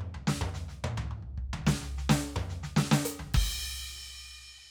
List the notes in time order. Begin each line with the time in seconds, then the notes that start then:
0.01 mid tom
0.15 floor tom
0.28 snare
0.41 mid tom
0.54 snare
0.69 snare
0.84 high tom
0.98 floor tom
1.11 high tom
1.23 kick
1.38 kick
1.54 floor tom
1.67 snare
1.82 snare
1.98 snare
2.10 snare
2.36 mid tom
2.50 snare
2.63 snare
2.77 snare
2.92 snare
3.05 closed hi-hat
3.20 floor tom
3.24 kick
3.34 kick, crash
4.58 floor tom